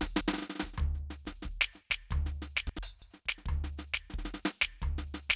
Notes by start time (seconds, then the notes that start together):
0.01 kick, snare
0.16 snare
0.22 snare
0.27 snare, hi-hat pedal
0.30 snare
0.38 snare
0.44 snare
0.51 kick, snare
0.62 snare
0.66 kick, floor tom
0.83 snare
0.99 snare, hi-hat pedal
1.15 kick, snare
1.31 kick, snare
1.49 snare
1.61 snare, hi-hat pedal
1.79 kick, snare
1.99 kick, floor tom
2.14 snare
2.30 snare, hi-hat pedal
2.44 kick, snare
2.65 kick, snare
2.83 closed hi-hat
2.99 snare, hi-hat pedal
3.14 kick, snare
3.26 snare
3.34 kick, floor tom
3.52 snare
3.66 snare, hi-hat pedal
3.82 kick, snare
3.98 kick, snare
4.07 snare
4.13 snare
4.22 snare
4.34 snare, hi-hat pedal
4.50 kick, snare
4.70 kick, floor tom
4.87 snare
5.02 snare, hi-hat pedal
5.18 kick, snare